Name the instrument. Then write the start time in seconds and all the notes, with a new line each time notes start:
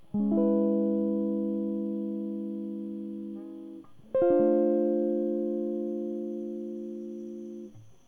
electric guitar
0.15 G#3
0.21 C#4
0.32 E4
0.38 B4
4.15 C5
4.22 F4
4.31 A3 D4